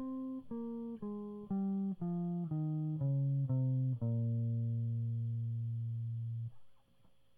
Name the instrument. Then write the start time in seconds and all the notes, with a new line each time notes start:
electric guitar
0.00 C4
0.52 A#3
1.03 G#3
1.52 G3
2.02 F3
2.53 D#3
3.02 C#3
3.51 C3
4.03 A#2